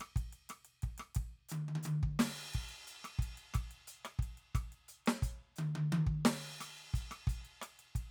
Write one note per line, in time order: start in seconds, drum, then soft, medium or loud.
0.01 cross-stick medium
0.01 closed hi-hat soft
0.16 kick medium
0.16 closed hi-hat soft
0.33 closed hi-hat soft
0.50 cross-stick medium
0.50 closed hi-hat medium
0.65 closed hi-hat soft
0.83 kick soft
0.83 closed hi-hat soft
0.98 cross-stick medium
0.98 closed hi-hat soft
1.15 kick medium
1.15 closed hi-hat medium
1.49 hi-hat pedal medium
1.49 high tom medium
1.69 high tom medium
1.76 high tom medium
1.83 hi-hat pedal medium
1.83 high tom medium
2.03 kick medium
2.20 snare loud
2.20 crash medium
2.54 kick soft
2.54 closed hi-hat soft
2.69 closed hi-hat soft
2.88 closed hi-hat soft
3.05 cross-stick medium
3.05 closed hi-hat soft
3.19 kick medium
3.19 closed hi-hat medium
3.38 closed hi-hat soft
3.54 kick medium
3.54 cross-stick medium
3.54 closed hi-hat medium
3.72 closed hi-hat soft
3.88 closed hi-hat medium
4.05 cross-stick medium
4.05 closed hi-hat soft
4.19 kick medium
4.19 closed hi-hat soft
4.38 closed hi-hat soft
4.55 kick medium
4.55 cross-stick medium
4.55 closed hi-hat medium
4.73 closed hi-hat soft
4.89 closed hi-hat soft
5.07 snare medium
5.07 closed hi-hat soft
5.23 closed hi-hat medium
5.23 kick medium
5.56 hi-hat pedal soft
5.56 high tom loud
5.76 high tom loud
5.93 high tom loud
6.07 kick medium
6.26 snare loud
6.26 crash medium
6.61 closed hi-hat medium
6.61 cross-stick medium
6.78 closed hi-hat soft
6.94 closed hi-hat medium
6.94 kick medium
7.12 cross-stick medium
7.12 closed hi-hat soft
7.28 closed hi-hat medium
7.28 kick medium
7.45 closed hi-hat soft
7.62 cross-stick medium
7.62 closed hi-hat medium
7.80 closed hi-hat soft
7.96 kick soft
7.96 closed hi-hat medium